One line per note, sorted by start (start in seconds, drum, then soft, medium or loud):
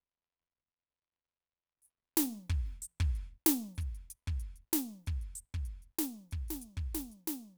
1.82 hi-hat pedal soft
2.17 snare medium
2.25 snare soft
2.49 kick medium
2.49 closed hi-hat soft
2.66 snare soft
2.82 closed hi-hat medium
3.00 kick medium
3.15 closed hi-hat soft
3.46 snare loud
3.46 open hi-hat medium
3.63 snare soft
3.75 kick soft
3.75 hi-hat pedal soft
3.81 closed hi-hat soft
3.94 closed hi-hat soft
4.10 closed hi-hat medium
4.27 kick soft
4.39 closed hi-hat soft
4.56 closed hi-hat soft
4.73 snare medium
4.73 closed hi-hat loud
5.06 kick soft
5.06 closed hi-hat soft
5.21 closed hi-hat soft
5.35 closed hi-hat medium
5.54 kick soft
5.65 closed hi-hat soft
5.82 closed hi-hat soft
5.98 snare medium
5.98 closed hi-hat medium
6.31 kick soft
6.31 closed hi-hat soft
6.48 snare soft
6.48 closed hi-hat soft
6.61 closed hi-hat medium
6.77 kick soft
6.94 snare medium
6.94 closed hi-hat medium
7.11 closed hi-hat soft
7.27 snare medium
7.27 closed hi-hat medium